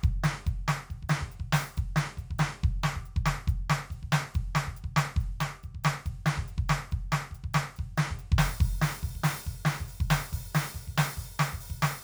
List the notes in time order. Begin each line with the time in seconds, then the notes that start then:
0.01 closed hi-hat, kick, snare
0.24 closed hi-hat, snare
0.43 closed hi-hat, kick, snare
0.68 closed hi-hat, snare
0.87 kick, snare, closed hi-hat
1.03 kick
1.09 closed hi-hat, snare
1.21 kick, snare
1.32 closed hi-hat
1.40 kick
1.53 open hi-hat, snare
1.74 closed hi-hat, snare, hi-hat pedal
1.78 kick
1.96 closed hi-hat, snare
2.15 closed hi-hat, kick, snare
2.31 kick
2.39 closed hi-hat, snare
2.58 snare
2.63 closed hi-hat, kick
2.83 closed hi-hat, snare
2.96 kick, snare
3.06 closed hi-hat
3.16 kick
3.26 closed hi-hat, snare
3.45 closed hi-hat, kick, snare
3.70 closed hi-hat, snare
3.90 kick, closed hi-hat
4.03 kick
4.12 closed hi-hat, snare
4.32 closed hi-hat, kick, snare
4.55 closed hi-hat, snare
4.67 kick
4.77 closed hi-hat
4.84 kick
4.97 closed hi-hat, snare
5.16 kick, snare
5.21 closed hi-hat
5.41 closed hi-hat, snare
5.63 closed hi-hat, kick
5.75 kick
5.84 closed hi-hat, snare
6.00 snare
6.06 closed hi-hat, kick
6.26 closed hi-hat, snare
6.38 kick, snare
6.48 closed hi-hat
6.58 kick
6.69 closed hi-hat, snare
6.89 closed hi-hat, kick, snare
7.12 closed hi-hat, snare
7.31 closed hi-hat, kick, snare
7.44 kick
7.54 closed hi-hat, snare
7.74 closed hi-hat, snare
7.79 kick
7.98 closed hi-hat, snare
8.11 kick, snare
8.19 closed hi-hat
8.32 kick
8.38 open hi-hat, snare
8.60 open hi-hat, kick, snare
8.82 open hi-hat, snare
9.02 open hi-hat, kick, snare
9.15 kick
9.24 open hi-hat, snare
9.47 kick
9.65 open hi-hat, snare
9.80 kick
9.85 open hi-hat, snare
10.00 kick
10.10 open hi-hat, snare
10.33 open hi-hat, kick, snare
10.55 open hi-hat, snare
10.75 kick, snare
10.88 kick
10.98 open hi-hat, snare
11.17 open hi-hat, kick, snare
11.39 open hi-hat, snare
11.53 kick
11.59 open hi-hat, snare
11.70 kick
11.82 open hi-hat, snare